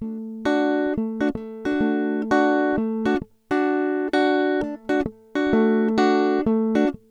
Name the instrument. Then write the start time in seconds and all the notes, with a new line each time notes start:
acoustic guitar
0.03 A3
0.46 D4 F#4
0.99 A3
1.22 D4 F#4
1.36 A3
1.66 D4 F#4
1.82 A3
2.32 D4 F#4
2.79 A3
3.06 D4 F#4
3.52 D4 F#4
4.14 D4 F#4
4.63 A3
4.90 D4 F#4
5.37 D4 F#4
5.54 A3
5.99 D4 F#4
6.47 A3
6.76 D4 F#4